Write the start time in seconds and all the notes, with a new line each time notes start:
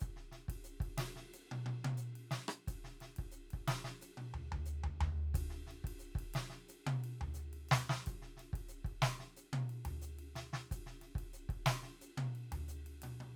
0.01 kick, hi-hat pedal, ride
0.17 snare
0.33 snare, ride
0.49 kick, ride
0.65 hi-hat pedal
0.81 kick, ride
0.98 snare, ride
1.17 snare
1.34 hi-hat pedal, ride
1.52 high tom
1.67 high tom
1.85 high tom
1.98 hi-hat pedal
2.16 ride
2.32 snare, ride
2.49 cross-stick
2.68 kick, hi-hat pedal, ride
2.85 snare
3.01 snare, ride
3.17 kick, ride
3.32 hi-hat pedal
3.51 kick, ride
3.68 snare, ride
3.85 snare
4.02 hi-hat pedal, ride
4.18 high tom
4.35 floor tom
4.53 floor tom
4.67 hi-hat pedal
4.84 floor tom
5.02 floor tom
5.35 kick, hi-hat pedal, ride
5.51 snare
5.68 snare
5.72 ride
5.85 kick, ride
6.00 hi-hat pedal
6.16 kick, ride
6.35 snare, ride
6.51 snare
6.69 hi-hat pedal, ride
6.88 high tom
7.05 ride
7.22 floor tom
7.35 snare, hi-hat pedal
7.54 ride
7.70 snare, ride bell
7.90 snare
8.07 kick, hi-hat pedal, ride
8.23 snare
8.38 snare, ride
8.54 kick, ride
8.69 hi-hat pedal
8.85 kick, ride
9.03 snare, ride
9.20 snare
9.37 hi-hat pedal, ride
9.54 high tom
9.70 ride
9.86 floor tom, ride
10.03 hi-hat pedal
10.20 ride
10.36 snare, ride
10.54 snare
10.72 kick, hi-hat pedal, ride
10.87 snare
11.02 snare, ride
11.16 kick, ride
11.34 hi-hat pedal
11.50 kick, ride
11.67 snare, ride
11.83 snare
12.02 hi-hat pedal, ride
12.18 high tom
12.36 ride
12.53 floor tom, ride
12.69 hi-hat pedal
12.87 ride
13.03 high tom, ride
13.21 high tom